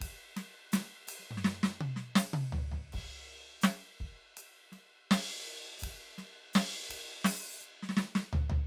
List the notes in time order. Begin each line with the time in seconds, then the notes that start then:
0.01 kick, hi-hat pedal, ride
0.37 snare, ride
0.73 snare, hi-hat pedal, ride
1.08 hi-hat pedal, ride
1.20 snare
1.31 mid tom
1.38 snare
1.45 snare
1.64 snare
1.81 high tom
1.97 snare
2.16 snare, hi-hat pedal
2.34 open hi-hat, high tom
2.53 floor tom
2.72 floor tom
2.93 kick, ride
3.62 snare, hi-hat pedal, ride
4.01 kick
4.37 hi-hat pedal, ride
4.72 snare, ride
5.11 snare, hi-hat pedal, ride
5.46 ride
5.79 kick, hi-hat pedal
5.84 ride
6.18 snare, ride
6.54 snare, hi-hat pedal, ride
6.90 kick, ride
7.25 open hi-hat, snare
7.61 hi-hat pedal
7.83 snare
7.89 snare
7.97 snare
8.16 snare
8.33 floor tom
8.50 floor tom